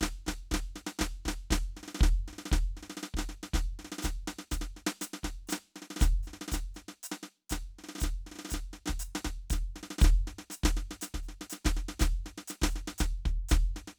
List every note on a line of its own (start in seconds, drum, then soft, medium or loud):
0.01 kick soft
0.01 snare medium
0.03 snare medium
0.27 kick soft
0.27 snare soft
0.28 snare medium
0.51 kick medium
0.51 snare medium
0.54 snare medium
0.76 snare soft
0.87 snare medium
0.99 kick soft
0.99 snare medium
1.01 snare medium
1.25 kick soft
1.25 snare soft
1.28 snare medium
1.51 kick medium
1.51 snare medium
1.51 snare loud
1.77 snare soft
1.83 snare soft
1.88 snare soft
1.95 snare medium
1.99 kick loud
1.99 snare soft
2.03 snare medium
2.28 snare soft
2.33 snare soft
2.38 snare soft
2.46 snare soft
2.52 kick medium
2.52 snare medium
2.77 snare soft
2.83 snare soft
2.90 snare soft
2.97 snare soft
3.03 snare medium
3.14 kick soft
3.14 snare soft
3.19 snare medium
3.29 snare soft
3.43 snare soft
3.54 kick medium
3.54 snare medium
3.79 snare soft
3.85 snare soft
3.92 snare medium
3.99 snare medium
4.02 kick medium
4.02 snare soft
4.02 hi-hat pedal medium
4.05 snare medium
4.28 snare medium
4.39 snare soft
4.51 kick medium
4.51 snare medium
4.51 hi-hat pedal medium
4.61 snare soft
4.77 snare soft
5.01 snare medium
5.01 hi-hat pedal loud
5.14 snare medium
5.23 kick soft
5.23 snare medium
5.23 hi-hat pedal soft
5.47 snare soft
5.47 hi-hat pedal medium
5.47 open hi-hat soft
5.53 snare medium
5.76 snare soft
5.82 snare soft
5.90 snare soft
5.96 snare medium
6.00 kick medium
6.00 snare soft
6.00 hi-hat pedal medium
6.02 snare medium
6.23 hi-hat pedal soft
6.27 snare soft
6.33 snare soft
6.41 snare soft
6.48 snare medium
6.48 hi-hat pedal medium
6.52 kick medium
6.52 snare medium
6.74 snare soft
6.74 hi-hat pedal soft
6.88 snare soft
7.03 hi-hat pedal medium
7.12 snare medium
7.23 snare soft
7.50 kick soft
7.50 snare medium
7.50 hi-hat pedal medium
7.79 snare soft
7.84 snare soft
7.95 snare soft
7.98 kick medium
7.98 snare soft
7.98 hi-hat pedal medium
8.04 snare medium
8.27 snare soft
8.32 snare soft
8.36 snare soft
8.39 snare soft
8.45 snare soft
8.49 kick soft
8.49 snare soft
8.49 hi-hat pedal medium
8.54 snare medium
8.73 snare soft
8.86 snare soft
8.88 kick soft
8.88 snare medium
9.00 hi-hat pedal medium
9.15 snare medium
9.25 kick soft
9.25 snare medium
9.50 kick medium
9.50 snare soft
9.50 hi-hat pedal medium
9.76 snare soft
9.83 snare soft
9.91 snare soft
9.99 kick loud
9.99 snare medium
9.99 hi-hat pedal medium
10.04 snare medium
10.27 snare soft
10.39 snare soft
10.50 snare soft
10.50 hi-hat pedal medium
10.64 kick medium
10.64 snare soft
10.65 snare loud
10.77 snare soft
10.91 snare soft
11.01 snare soft
11.01 hi-hat pedal loud
11.14 kick soft
11.14 snare soft
11.23 hi-hat pedal soft
11.29 snare soft
11.41 snare soft
11.50 snare soft
11.50 hi-hat pedal medium
11.65 kick medium
11.65 snare soft
11.65 snare medium
11.73 hi-hat pedal soft
11.77 snare soft
11.89 snare medium
12.00 kick medium
12.00 snare medium
12.00 hi-hat pedal medium
12.02 snare medium
12.26 snare soft
12.38 snare soft
12.48 snare soft
12.48 hi-hat pedal medium
12.62 kick medium
12.62 snare soft
12.64 snare loud
12.70 hi-hat pedal soft
12.76 snare soft
12.88 snare medium
12.98 kick medium
12.98 snare medium
12.98 hi-hat pedal medium
13.26 kick medium
13.26 snare soft
13.49 kick medium
13.49 snare medium
13.49 hi-hat pedal medium
13.76 snare soft
13.88 snare soft